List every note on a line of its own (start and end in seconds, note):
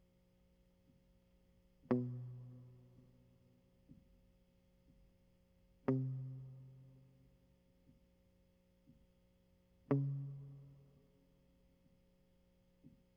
1.93 3.57 B2
5.90 7.36 C3
9.93 11.07 C#3